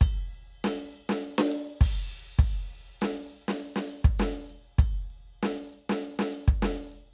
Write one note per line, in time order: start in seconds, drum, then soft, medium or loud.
0.01 kick loud
0.01 ride bell loud
0.34 ride bell soft
0.64 snare loud
0.64 ride bell loud
0.93 ride medium
1.09 snare loud
1.38 snare loud
1.52 ride loud
1.81 kick loud
1.81 crash medium
1.99 crash soft
2.39 kick loud
2.39 ride loud
2.73 ride soft
3.02 snare loud
3.02 ride loud
3.31 ride bell soft
3.48 snare loud
3.76 snare loud
3.89 ride bell medium
4.04 kick loud
4.19 snare loud
4.19 ride bell loud
4.50 ride bell soft
4.79 kick loud
4.79 ride bell medium
5.10 ride soft
5.43 snare loud
5.43 ride bell medium
5.73 ride bell soft
5.90 snare loud
6.19 snare loud
6.33 ride bell medium
6.48 kick loud
6.62 snare loud
6.62 ride bell medium
6.92 ride soft